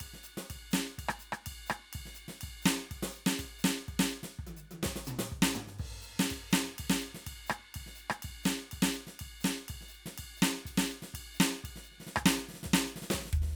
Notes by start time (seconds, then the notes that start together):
0.01 kick, ride bell
0.07 kick
0.14 snare
0.24 hi-hat pedal, ride
0.38 snare
0.51 kick, ride bell
0.56 kick
0.71 snare, hi-hat pedal
0.93 hi-hat pedal
0.99 kick, ride bell
1.05 kick
1.09 cross-stick
1.20 hi-hat pedal, ride
1.33 cross-stick
1.47 kick, ride bell
1.53 kick
1.67 cross-stick, hi-hat pedal
1.93 kick, ride bell
2.01 kick
2.06 snare
2.15 hi-hat pedal, ride
2.29 snare
2.42 kick, ride bell
2.50 kick
2.63 snare, hi-hat pedal
2.92 kick, ride bell
3.03 snare
3.11 hi-hat pedal
3.16 ride
3.27 snare
3.40 kick, ride bell
3.45 kick
3.59 hi-hat pedal
3.65 snare
3.71 snare
3.89 kick, ride bell
3.95 kick
4.00 snare
4.09 hi-hat pedal
4.24 snare
4.39 kick
4.46 kick, high tom
4.57 hi-hat pedal
4.71 open hi-hat, high tom
4.83 kick, snare
4.93 kick, snare
5.05 hi-hat pedal, mid tom
5.19 snare
5.32 kick
5.39 kick, snare
5.53 floor tom, hi-hat pedal
5.68 snare
5.79 kick, crash
5.87 kick
6.02 hi-hat pedal
6.20 snare
6.31 kick, ride bell
6.37 kick
6.51 snare, hi-hat pedal
6.79 kick, ride bell
6.86 kick
6.90 snare
7.00 hi-hat pedal, ride
7.15 snare
7.27 kick, ride bell
7.33 kick
7.47 cross-stick, hi-hat pedal
7.75 kick, ride bell
7.82 kick
7.87 snare
7.96 hi-hat pedal
8.00 ride
8.10 cross-stick
8.23 kick, ride bell
8.31 kick
8.44 snare, hi-hat pedal
8.72 kick, ride bell
8.83 snare
8.93 hi-hat pedal, ride
9.07 snare
9.20 kick, ride bell
9.27 kick
9.41 hi-hat pedal
9.45 snare
9.69 kick, ride bell
9.76 kick
9.82 snare
9.89 hi-hat pedal
9.95 ride
10.06 snare
10.18 kick, ride bell
10.37 hi-hat pedal
10.43 snare
10.66 kick, ride
10.78 snare
10.86 hi-hat pedal
10.91 ride
11.03 snare
11.15 kick, ride bell
11.35 hi-hat pedal
11.41 snare
11.65 kick, ride bell
11.77 snare
11.84 hi-hat pedal
11.92 snare
11.99 snare
12.01 snare
12.07 snare
12.17 kick, cross-stick
12.23 kick, snare
12.38 snare, hi-hat pedal
12.49 snare
12.54 snare
12.59 snare
12.64 kick, snare
12.74 snare
12.87 snare, hi-hat pedal
12.96 snare
13.03 snare
13.09 snare
13.11 kick, snare
13.20 kick, snare
13.26 snare
13.33 hi-hat pedal, mid tom
13.42 snare
13.47 snare
13.51 snare